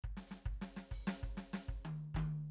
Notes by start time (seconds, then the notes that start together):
0.04 kick
0.17 snare
0.27 hi-hat pedal
0.31 snare
0.46 kick
0.62 snare
0.77 snare
0.91 kick, hi-hat pedal
1.07 snare
1.23 kick
1.37 snare
1.53 snare, hi-hat pedal
1.69 kick
1.85 high tom
2.14 kick, hi-hat pedal, high tom